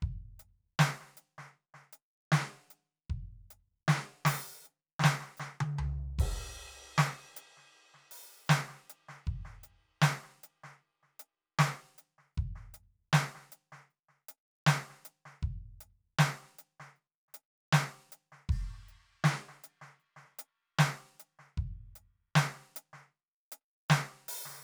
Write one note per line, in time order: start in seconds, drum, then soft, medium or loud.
0.01 kick medium
0.01 closed hi-hat soft
0.40 closed hi-hat medium
0.79 snare loud
1.01 snare soft
1.17 closed hi-hat medium
1.38 snare soft
1.74 snare soft
1.93 closed hi-hat medium
2.32 snare loud
2.53 snare soft
2.71 closed hi-hat medium
3.10 kick soft
3.51 closed hi-hat medium
3.88 snare loud
4.25 open hi-hat loud
4.25 snare loud
4.65 hi-hat pedal medium
5.00 snare medium
5.04 snare loud
5.21 snare soft
5.37 snare medium
5.37 hi-hat pedal medium
5.61 high tom loud
5.79 floor tom medium
6.19 kick medium
6.19 crash medium
6.98 snare loud
7.11 snare soft
7.17 snare soft
7.37 closed hi-hat loud
7.57 snare soft
7.94 snare soft
8.11 open hi-hat medium
8.46 snare loud
8.46 hi-hat pedal medium
8.69 snare soft
8.90 closed hi-hat medium
9.09 snare soft
9.26 kick medium
9.26 closed hi-hat soft
9.45 snare soft
9.64 closed hi-hat medium
10.02 snare loud
10.24 snare soft
10.44 closed hi-hat medium
10.64 snare soft
11.03 snare soft
11.20 closed hi-hat loud
11.59 snare loud
11.64 snare medium
11.98 closed hi-hat medium
12.19 snare soft
12.35 kick medium
12.35 closed hi-hat soft
12.56 snare soft
12.66 snare soft
12.74 closed hi-hat medium
13.13 snare loud
13.35 snare soft
13.52 closed hi-hat medium
13.72 snare soft
13.91 closed hi-hat soft
14.09 snare soft
14.29 closed hi-hat loud
14.67 snare loud
14.90 snare soft
15.05 closed hi-hat medium
15.26 snare soft
15.42 kick medium
15.42 closed hi-hat soft
15.81 closed hi-hat medium
16.19 snare loud
16.43 snare soft
16.59 closed hi-hat medium
16.80 snare soft
16.96 closed hi-hat soft
17.29 snare soft
17.34 closed hi-hat loud
17.73 snare loud
18.12 closed hi-hat medium
18.32 snare soft
18.49 kick medium
18.49 crash soft
18.74 snare soft
18.89 closed hi-hat soft
19.24 snare loud
19.49 snare soft
19.64 closed hi-hat medium
19.82 snare soft
20.00 closed hi-hat soft
20.17 snare soft
20.25 snare soft
20.39 closed hi-hat loud
20.79 snare loud
20.99 snare soft
21.20 closed hi-hat medium
21.39 snare soft
21.58 kick medium
21.96 closed hi-hat medium
22.36 snare loud
22.55 snare soft
22.76 closed hi-hat loud
22.93 snare soft
23.52 closed hi-hat loud
23.89 snare loud
23.89 hi-hat pedal medium
24.11 snare soft
24.22 snare soft
24.29 open hi-hat loud
24.46 snare soft
24.50 snare soft
24.54 snare soft
24.58 snare soft